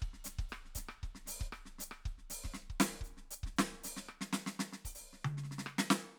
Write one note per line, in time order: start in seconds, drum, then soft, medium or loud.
0.01 kick soft
0.01 snare soft
0.13 snare soft
0.24 snare soft
0.24 hi-hat pedal medium
0.39 kick soft
0.39 snare soft
0.49 cross-stick medium
0.49 hi-hat pedal soft
0.65 snare soft
0.75 kick soft
0.75 snare soft
0.75 hi-hat pedal medium
0.89 cross-stick medium
1.03 kick soft
1.03 snare soft
1.15 snare soft
1.26 snare soft
1.27 snare soft
1.27 hi-hat pedal loud
1.40 kick soft
1.40 snare soft
1.52 cross-stick medium
1.52 hi-hat pedal soft
1.65 snare soft
1.78 snare soft
1.78 hi-hat pedal loud
1.91 cross-stick medium
2.05 kick soft
2.05 snare soft
2.18 snare soft
2.30 snare soft
2.30 hi-hat pedal medium
2.44 kick soft
2.44 snare soft
2.54 snare soft
2.70 kick soft
2.80 snare loud
2.80 hi-hat pedal medium
3.01 kick soft
3.01 hi-hat pedal soft
3.17 snare soft
3.31 hi-hat pedal medium
3.43 kick soft
3.43 snare soft
3.56 snare loud
3.56 hi-hat pedal soft
3.73 snare soft
3.80 kick soft
3.80 hi-hat pedal medium
3.85 snare soft
3.97 snare soft
4.09 cross-stick medium
4.21 snare medium
4.33 snare medium
4.46 snare medium
4.59 snare medium
4.73 snare soft
4.85 open hi-hat medium
4.85 kick soft
4.95 hi-hat pedal medium
5.01 snare soft
5.13 snare soft
5.25 high tom loud
5.37 snare soft
5.44 snare soft
5.51 snare soft
5.58 snare medium
5.66 cross-stick medium
5.78 snare loud
5.90 snare loud